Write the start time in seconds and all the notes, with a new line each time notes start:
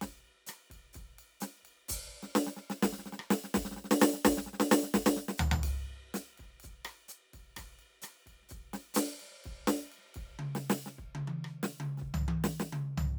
0.01 kick, snare, hi-hat pedal, ride
0.08 kick
0.25 ride
0.46 cross-stick, hi-hat pedal, ride
0.70 kick, ride
0.75 kick
0.93 kick, hi-hat pedal, ride
1.19 ride
1.40 snare, hi-hat pedal, ride
1.62 kick, ride
1.88 kick, hi-hat pedal, ride
1.98 kick
2.23 snare
2.35 snare
2.47 snare
2.70 snare
2.82 kick, snare
2.92 snare
2.99 snare
3.06 snare
3.12 snare
3.17 cross-stick, snare
3.30 snare
3.44 snare
3.54 kick, snare
3.65 snare
3.70 snare, hi-hat pedal
3.76 snare
3.84 snare
3.91 snare
3.99 snare, hi-hat pedal
4.13 snare
4.25 kick, snare
4.37 snare
4.42 hi-hat pedal
4.46 snare
4.53 snare
4.59 snare
4.71 snare, hi-hat pedal
4.83 snare
4.94 kick, snare
5.00 kick
5.06 snare
5.16 snare
5.28 snare
5.38 hi-hat pedal, floor tom
5.51 floor tom
5.63 kick, hi-hat pedal, ride
6.14 snare, hi-hat pedal, ride
6.38 kick, ride
6.43 kick, snare
6.50 snare
6.60 hi-hat pedal, ride
6.64 kick
6.85 cross-stick, ride
7.08 hi-hat pedal, ride
7.33 kick, ride
7.39 kick
7.56 kick, cross-stick, hi-hat pedal, ride
7.63 kick
7.79 ride
8.02 cross-stick, hi-hat pedal, ride
8.26 kick, ride
8.42 snare
8.49 kick, hi-hat pedal, ride
8.73 snare, ride
8.94 snare, hi-hat pedal, ride
9.19 snare, ride
9.27 snare
9.31 snare
9.44 kick, ride
9.67 snare, ride
9.92 ride
9.98 snare
10.03 snare
10.14 kick, ride
10.39 mid tom
10.55 snare
10.70 snare
10.86 snare
10.98 kick
11.04 kick
11.15 mid tom
11.27 high tom
11.44 cross-stick
11.63 snare
11.80 mid tom
11.97 kick, snare
12.14 floor tom
12.28 high tom
12.44 snare
12.60 snare
12.73 mid tom
12.98 floor tom